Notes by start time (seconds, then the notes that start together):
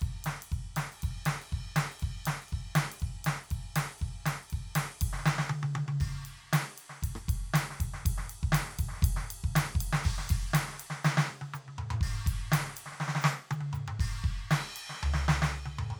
0.01 kick, ride
0.24 snare, ride
0.42 ride
0.52 kick, ride
0.76 snare, ride
0.92 ride
1.02 kick, ride
1.25 snare, ride
1.41 ride
1.52 kick
1.76 snare, ride
1.92 ride
2.00 kick, ride
2.26 snare, hi-hat pedal, ride
2.42 ride
2.48 hi-hat pedal, ride
2.52 kick
2.75 snare, ride
2.92 ride
3.00 kick, ride
3.24 snare, ride
3.44 ride
3.51 kick, ride
3.76 snare, ride
3.92 ride
3.98 kick, ride
4.26 snare, hi-hat pedal, ride
4.43 ride
4.50 kick, ride
4.75 snare, ride
4.99 kick, hi-hat pedal, ride
5.13 snare
5.19 snare
5.26 snare, hi-hat pedal
5.38 snare
5.49 high tom
5.63 high tom
5.75 high tom
5.88 high tom
6.00 kick, hi-hat pedal, crash
6.25 ride
6.53 snare, ride
6.76 hi-hat pedal, ride
6.89 snare
7.02 kick, ride
7.15 cross-stick
7.28 kick, ride
7.54 snare, ride
7.70 snare
7.77 kick, hi-hat pedal, ride
7.94 snare
8.05 kick, ride
8.18 snare
8.30 ride
8.43 kick
8.52 snare, ride
8.66 snare
8.79 kick, ride
8.89 snare
8.93 snare
8.96 snare
9.02 kick, ride
9.16 snare
9.30 ride
9.44 kick
9.55 snare, ride
9.75 kick
9.81 ride
9.93 snare
10.04 kick, crash
10.18 snare
10.29 kick, ride
10.53 snare, ride
10.68 snare
10.73 snare
10.80 ride
10.90 snare
11.04 kick, snare, hi-hat pedal
11.17 snare
11.29 high tom
11.41 high tom
11.54 hi-hat pedal, high tom
11.68 high tom
11.78 mid tom
11.90 mid tom
12.01 kick, crash
12.26 kick, ride
12.52 snare, ride
12.60 snare
12.66 snare
12.76 hi-hat pedal, ride
12.86 snare
12.92 snare
13.00 snare
13.08 snare
13.15 snare
13.21 snare, hi-hat pedal
13.51 hi-hat pedal, high tom
13.61 high tom
13.73 hi-hat pedal, mid tom
13.88 mid tom
13.99 kick, crash
14.24 kick
14.51 snare, ride
14.76 ride
14.89 snare
14.94 snare
15.03 floor tom
15.14 snare
15.28 snare
15.42 snare
15.54 high tom
15.66 high tom
15.79 mid tom
15.90 mid tom